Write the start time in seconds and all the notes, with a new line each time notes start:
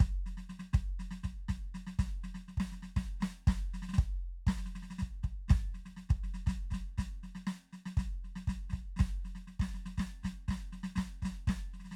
0.01 kick, snare
0.27 snare
0.38 snare
0.50 snare
0.74 kick, snare
1.00 snare
1.12 snare
1.24 kick, snare
1.49 kick, snare
1.75 snare
1.88 snare
2.00 kick, snare
2.25 snare
2.35 snare
2.49 snare
2.58 kick, snare
2.73 snare
2.83 snare
2.97 kick, snare
3.21 snare
3.23 snare
3.48 kick, snare
3.75 snare
3.83 snare
3.90 snare
3.94 snare
3.99 kick
4.48 kick, snare
4.58 snare
4.67 snare
4.76 snare
4.83 snare
4.91 snare
4.99 kick, snare
5.24 kick, snare
5.49 kick, snare
5.75 snare
5.86 snare
5.97 snare
6.10 kick, snare
6.24 snare
6.35 snare
6.47 kick, snare
6.49 snare
6.71 kick, snare
6.74 snare
6.99 kick, snare
7.24 snare
7.36 snare
7.48 snare
7.74 snare
7.86 snare
7.98 kick, snare
8.25 snare
8.37 snare
8.48 kick, snare
8.71 snare
8.73 kick, snare
8.97 snare
9.00 kick, snare
9.26 snare
9.36 snare
9.48 snare
9.60 kick, snare
9.75 snare
9.87 snare
9.99 kick, snare
10.00 snare
10.24 kick, snare
10.26 snare
10.49 kick, snare
10.52 snare
10.73 snare
10.84 snare
10.97 kick, snare
10.99 snare
11.23 kick, snare
11.26 snare
11.48 kick, snare
11.74 snare
11.81 snare
11.85 snare
11.92 snare